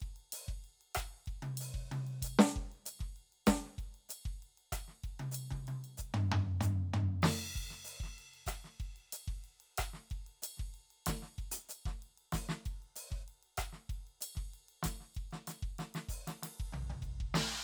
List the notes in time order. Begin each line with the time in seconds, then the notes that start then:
0.01 kick, ride
0.16 ride
0.33 hi-hat pedal, ride bell
0.47 kick, snare
0.64 ride
0.81 ride
0.95 kick, cross-stick, hi-hat pedal, ride bell
1.26 kick, ride
1.43 high tom, ride
1.58 hi-hat pedal, ride bell
1.74 kick
1.92 high tom, ride
2.07 ride
2.22 kick, hi-hat pedal, ride bell
2.39 snare
2.56 kick
2.72 ride
2.86 hi-hat pedal, ride bell
3.00 kick, snare
3.16 ride
3.33 ride
3.47 kick, snare, hi-hat pedal, ride bell
3.65 snare
3.79 kick, ride
3.83 snare
3.95 ride
4.09 hi-hat pedal, ride bell
4.25 kick, snare
4.43 ride
4.58 ride
4.73 kick, cross-stick, hi-hat pedal, ride bell
4.88 snare
5.04 kick, ride
5.20 high tom, ride
5.32 hi-hat pedal, ride bell
5.51 kick, high tom
5.68 high tom, ride
5.84 ride bell
5.98 kick, hi-hat pedal, ride
6.14 mid tom
6.32 mid tom
6.61 hi-hat pedal, mid tom
6.94 mid tom
7.23 snare, crash
7.56 kick, ride
7.71 snare
7.85 hi-hat pedal, ride
8.00 kick, snare
8.19 ride
8.34 ride
8.47 kick, cross-stick, hi-hat pedal, ride bell
8.65 snare
8.80 kick, ride
8.96 ride
9.13 hi-hat pedal, ride bell
9.28 kick, snare
9.44 ride
9.61 ride
9.78 kick, cross-stick, hi-hat pedal, ride bell
9.94 snare
10.11 kick, ride
10.27 ride
10.43 hi-hat pedal, ride bell
10.58 kick, snare
10.74 ride
10.91 ride
11.07 kick, snare, hi-hat pedal, ride bell
11.23 snare
11.38 kick, ride
11.52 closed hi-hat, ride
11.69 hi-hat pedal, ride bell
11.86 kick, snare
12.03 ride
12.18 ride
12.33 kick, snare, hi-hat pedal, ride
12.49 snare
12.66 kick, ride bell
12.82 ride
12.96 hi-hat pedal, ride bell
13.11 kick, snare
13.28 ride
13.43 ride
13.58 kick, cross-stick, hi-hat pedal, ride bell
13.73 snare
13.90 kick, ride
14.07 ride
14.21 hi-hat pedal, ride bell
14.35 kick, snare
14.54 ride
14.69 ride
14.83 kick, snare, hi-hat pedal, ride bell
15.01 snare
15.15 kick, ride bell
15.31 snare, ride
15.48 snare, hi-hat pedal, ride bell
15.63 kick
15.79 snare, ride
15.95 snare, ride
16.09 kick, hi-hat pedal
16.28 snare, ride
16.43 snare, ride
16.60 kick
16.73 floor tom, high tom
16.90 floor tom, high tom
17.02 kick, hi-hat pedal
17.21 kick
17.35 snare, ride
17.53 snare